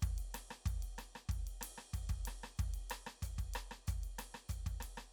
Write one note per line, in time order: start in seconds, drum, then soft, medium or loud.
0.01 kick medium
0.01 hi-hat pedal soft
0.01 ride soft
0.18 ride soft
0.34 cross-stick medium
0.34 ride medium
0.51 cross-stick medium
0.66 kick medium
0.66 hi-hat pedal soft
0.66 ride soft
0.83 ride soft
0.98 cross-stick medium
0.98 ride soft
1.15 cross-stick medium
1.29 kick medium
1.29 hi-hat pedal soft
1.29 ride soft
1.47 ride soft
1.61 cross-stick medium
1.61 ride medium
1.78 cross-stick medium
1.93 kick medium
1.93 hi-hat pedal soft
1.93 ride soft
2.09 kick medium
2.09 ride soft
2.25 cross-stick medium
2.25 ride medium
2.43 cross-stick medium
2.57 kick medium
2.57 hi-hat pedal soft
2.57 ride soft
2.74 ride soft
2.90 cross-stick medium
2.90 ride medium
3.07 cross-stick medium
3.22 kick soft
3.22 hi-hat pedal medium
3.22 ride soft
3.38 kick soft
3.38 ride soft
3.54 cross-stick medium
3.54 ride soft
3.71 cross-stick medium
3.87 kick medium
3.87 hi-hat pedal medium
3.87 ride soft
4.04 ride soft
4.19 cross-stick medium
4.19 ride medium
4.34 cross-stick medium
4.49 kick soft
4.49 hi-hat pedal medium
4.49 ride soft
4.66 kick medium
4.66 ride soft
4.80 cross-stick medium
4.80 ride medium
4.97 cross-stick medium